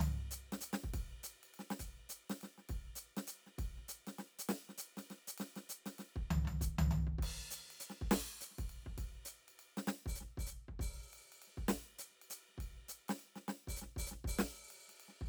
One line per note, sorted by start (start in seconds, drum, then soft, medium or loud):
0.01 floor tom medium
0.01 ride medium
0.32 hi-hat pedal medium
0.32 ride soft
0.53 snare medium
0.53 ride soft
0.62 hi-hat pedal medium
0.62 ride soft
0.74 snare medium
0.84 kick soft
0.94 kick medium
0.94 ride medium
1.24 hi-hat pedal medium
1.24 ride medium
1.44 ride soft
1.55 ride soft
1.60 snare soft
1.71 snare medium
1.80 kick soft
1.80 hi-hat pedal medium
1.80 ride medium
2.10 hi-hat pedal medium
2.10 ride soft
2.30 snare medium
2.30 ride soft
2.42 snare soft
2.42 ride soft
2.59 snare soft
2.70 kick soft
2.70 ride soft
2.96 hi-hat pedal medium
2.96 ride soft
3.17 snare medium
3.17 ride soft
3.28 hi-hat pedal medium
3.28 ride medium
3.47 snare soft
3.59 kick medium
3.59 ride medium
3.78 snare soft
3.89 hi-hat pedal medium
3.89 ride soft
4.08 snare soft
4.08 ride soft
4.19 snare soft
4.19 ride soft
4.40 hi-hat pedal medium
4.50 snare medium
4.50 ride medium
4.70 snare soft
4.79 hi-hat pedal medium
4.79 ride medium
4.98 snare soft
4.98 ride soft
5.11 snare soft
5.11 ride soft
5.28 hi-hat pedal medium
5.38 snare medium
5.38 ride medium
5.57 snare soft
5.57 ride soft
5.70 hi-hat pedal medium
5.87 snare soft
5.87 ride medium
5.99 snare soft
5.99 ride soft
6.17 kick medium
6.31 floor tom medium
6.31 high tom medium
6.46 floor tom medium
6.46 high tom soft
6.62 kick medium
6.62 hi-hat pedal medium
6.79 floor tom loud
6.79 high tom medium
6.92 floor tom medium
6.92 high tom soft
7.08 kick soft
7.19 kick medium
7.23 ride medium
7.23 crash medium
7.52 hi-hat pedal medium
7.52 ride soft
7.71 ride soft
7.81 hi-hat pedal medium
7.81 ride soft
7.91 snare soft
8.02 kick medium
8.12 snare loud
8.12 crash medium
8.42 hi-hat pedal medium
8.42 ride soft
8.52 snare soft
8.59 kick soft
8.59 ride soft
8.70 ride soft
8.83 kick soft
8.83 snare soft
8.98 kick soft
8.98 ride medium
9.26 hi-hat pedal medium
9.26 ride soft
9.49 ride soft
9.60 ride soft
9.78 snare medium
9.88 snare medium
10.07 open hi-hat medium
10.07 kick medium
10.16 hi-hat pedal medium
10.21 snare soft
10.38 open hi-hat medium
10.38 kick soft
10.47 hi-hat pedal medium
10.53 snare soft
10.69 kick soft
10.80 open hi-hat medium
10.80 kick medium
11.14 ride soft
11.33 ride soft
11.43 ride soft
11.48 snare soft
11.58 kick soft
11.69 snare medium
11.69 hi-hat pedal soft
11.69 ride medium
11.99 hi-hat pedal medium
11.99 ride soft
12.12 snare soft
12.22 ride soft
12.31 hi-hat pedal medium
12.31 ride medium
12.49 snare soft
12.55 kick soft
12.55 snare soft
12.59 snare soft
12.59 ride soft
12.79 snare soft
12.89 hi-hat pedal medium
12.89 ride soft
13.09 snare medium
13.09 ride soft
13.20 ride soft
13.37 snare soft
13.49 snare medium
13.68 open hi-hat medium
13.68 kick soft
13.77 hi-hat pedal medium
13.82 snare soft
13.97 open hi-hat medium
13.97 kick soft
14.07 hi-hat pedal medium
14.12 snare soft
14.25 open hi-hat medium
14.25 kick medium
14.39 snare medium
14.71 ride soft
14.89 snare soft
14.89 ride soft
15.01 ride soft
15.09 snare soft
15.22 kick soft